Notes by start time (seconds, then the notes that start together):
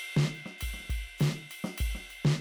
0.01 ride
0.17 snare
0.24 snare, hi-hat pedal
0.35 ride
0.46 snare
0.58 hi-hat pedal, ride bell
0.63 kick
0.74 snare
0.80 snare
0.85 snare
0.90 kick, ride
1.18 snare, hi-hat pedal, ride
1.29 snare
1.50 hi-hat pedal, ride
1.64 snare
1.78 kick, hi-hat pedal, ride
1.86 kick
1.90 kick
1.95 snare
2.09 hi-hat pedal, ride
2.25 snare